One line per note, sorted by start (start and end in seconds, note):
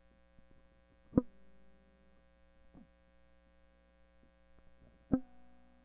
1.20 1.26 B3
5.15 5.22 C4